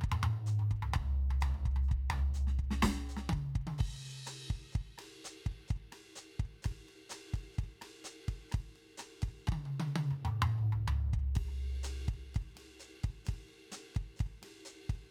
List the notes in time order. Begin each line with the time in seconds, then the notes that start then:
0.01 kick, mid tom
0.09 kick, mid tom
0.23 mid tom
0.36 mid tom
0.46 hi-hat pedal, mid tom
0.59 mid tom
0.71 kick, floor tom
0.76 kick
0.82 floor tom
0.94 kick, floor tom
1.08 floor tom
1.20 floor tom
1.31 floor tom
1.41 hi-hat pedal, floor tom
1.54 floor tom
1.65 kick, floor tom
1.71 kick
1.76 floor tom
1.83 hi-hat pedal
1.88 kick, floor tom
2.10 floor tom
2.34 hi-hat pedal
2.47 snare
2.59 kick
2.64 kick
2.71 snare
2.82 kick, snare
2.97 snare
3.09 hi-hat pedal
3.17 snare
3.29 kick, high tom
3.38 kick
3.55 kick, high tom
3.61 kick
3.67 high tom
3.78 kick, crash
3.87 kick
4.26 cross-stick, snare, hi-hat pedal, ride
4.50 kick, ride
4.55 kick
4.72 kick, hi-hat pedal, ride
4.81 kick
4.98 cross-stick, snare, ride
5.24 hi-hat pedal
5.46 kick
5.51 kick
5.68 kick, hi-hat pedal
5.76 kick
5.92 cross-stick, snare, ride
6.16 hi-hat pedal
6.40 kick
6.45 kick
6.62 kick, cross-stick, snare, hi-hat pedal, ride
6.71 kick
6.89 ride
7.10 cross-stick, hi-hat pedal, ride
7.34 kick, ride
7.53 hi-hat pedal
7.58 kick, ride
7.63 kick
7.81 cross-stick, ride
8.04 hi-hat pedal, ride
8.28 kick, ride
8.49 cross-stick, snare, hi-hat pedal, ride
8.54 kick
8.60 kick
8.76 ride
8.98 cross-stick, snare, hi-hat pedal, ride
9.22 kick, ride
9.28 kick
9.47 kick, high tom
9.52 kick, high tom
9.65 high tom
9.80 high tom
9.96 high tom
10.11 mid tom
10.25 mid tom
10.42 mid tom
10.58 floor tom
10.72 floor tom
10.88 floor tom
11.13 kick
11.19 kick
11.36 kick, ride
11.48 cross-stick
11.83 cross-stick, hi-hat pedal, ride
12.08 kick, ride
12.13 kick
12.35 kick, ride
12.41 kick
12.55 snare, ride
12.80 hi-hat pedal, ride
13.04 kick, ride
13.09 kick
13.25 kick, snare, hi-hat pedal, ride
13.34 kick
13.49 ride
13.72 snare, hi-hat pedal, ride
13.95 kick, ride
14.01 kick
14.16 hi-hat pedal, ride
14.20 kick
14.26 kick
14.42 snare, ride
14.65 hi-hat pedal, ride
14.89 kick, ride
14.94 kick